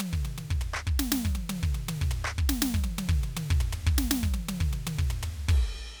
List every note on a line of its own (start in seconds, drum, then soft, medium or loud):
0.00 high tom loud
0.13 kick medium
0.25 mid tom medium
0.38 mid tom medium
0.50 kick medium
0.61 floor tom medium
0.73 percussion loud
0.87 kick medium
0.99 snare loud
1.12 snare loud
1.25 kick medium
1.35 high tom medium
1.49 high tom loud
1.63 kick medium
1.74 mid tom medium
1.88 mid tom loud
2.01 kick medium
2.11 floor tom loud
2.24 percussion loud
2.38 kick medium
2.49 snare loud
2.62 snare loud
2.74 kick medium
2.84 high tom medium
2.98 high tom loud
3.09 kick medium
3.23 mid tom medium
3.37 mid tom loud
3.50 kick medium
3.60 floor tom medium
3.72 floor tom loud
3.87 kick medium
3.98 snare loud
4.11 snare loud
4.23 kick medium
4.34 high tom medium
4.48 high tom loud
4.60 kick medium
4.73 mid tom medium
4.87 mid tom loud
4.98 kick medium
5.10 floor tom medium
5.23 floor tom loud
5.48 kick loud
5.48 ride medium